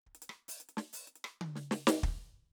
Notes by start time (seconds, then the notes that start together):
0.06 kick
0.15 closed hi-hat
0.22 closed hi-hat
0.29 cross-stick
0.48 hi-hat pedal
0.60 closed hi-hat
0.69 closed hi-hat
0.77 snare
0.93 hi-hat pedal
1.07 closed hi-hat
1.16 closed hi-hat
1.24 cross-stick
1.41 high tom
1.55 snare
1.71 snare
1.87 snare
2.03 kick